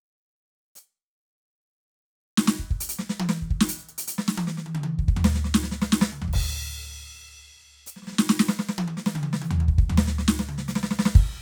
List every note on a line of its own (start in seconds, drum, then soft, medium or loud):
0.76 hi-hat pedal medium
2.38 snare loud
2.60 kick soft
2.71 kick medium
2.81 closed hi-hat loud
2.90 closed hi-hat loud
2.99 snare medium
3.10 snare medium
3.20 high tom loud
3.30 snare loud
3.43 kick soft
3.51 kick medium
3.61 snare loud
3.69 closed hi-hat loud
3.89 closed hi-hat medium
3.99 closed hi-hat loud
4.08 closed hi-hat loud
4.19 snare medium
4.29 snare loud
4.38 high tom loud
4.48 snare medium
4.58 snare medium
4.67 high tom medium
4.75 mid tom loud
4.84 high tom loud
4.99 kick medium
5.09 kick medium
5.17 floor tom loud
5.25 snare loud
5.36 snare medium
5.45 snare medium
5.55 snare loud
5.64 snare medium
5.72 snare medium
5.82 snare loud
5.93 snare loud
6.02 snare loud
6.13 mid tom medium
6.22 floor tom loud
6.28 kick soft
6.33 kick medium
6.33 crash loud
7.87 hi-hat pedal loud
7.97 snare soft
8.03 snare soft
8.08 snare medium
8.13 snare soft
8.19 snare loud
8.30 snare loud
8.49 snare loud
8.60 snare medium
8.69 snare medium
8.79 high tom loud
8.88 high tom medium
8.98 snare medium
9.07 snare loud
9.16 mid tom loud
9.24 high tom medium
9.34 snare medium
9.42 hi-hat pedal soft
9.42 high tom loud
9.51 floor tom loud
9.61 high tom medium
9.69 kick medium
9.90 floor tom loud
9.98 snare loud
10.08 snare medium
10.19 snare medium
10.29 snare loud
10.29 hi-hat pedal soft
10.40 snare medium
10.49 mid tom loud
10.59 snare medium
10.69 snare medium
10.69 hi-hat pedal medium
10.76 snare medium
10.84 snare medium
10.91 snare medium
11.00 snare loud
11.06 snare loud
11.16 kick loud
11.16 crash medium